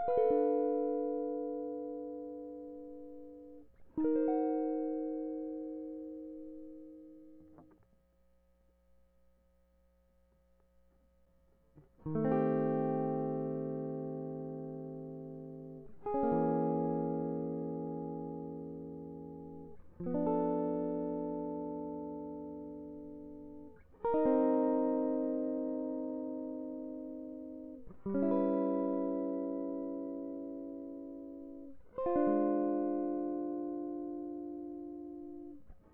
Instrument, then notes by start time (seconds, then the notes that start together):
electric guitar
0.00 F5
0.08 B4
0.19 A4
0.31 D4
3.98 D#4
4.04 A#4
4.17 C5
4.29 F#5
12.06 D#3
12.17 A3
12.25 C4
12.33 G4
16.07 G#4
16.14 C#4
16.24 A#3
16.34 E3
20.01 F3
20.07 B3
20.16 D4
20.28 A4
24.08 A#4
24.14 D#4
24.27 C4
28.04 G3
28.16 C#4
28.24 E4
28.33 B4
31.99 C5
32.06 F4
32.16 D4
32.28 G#3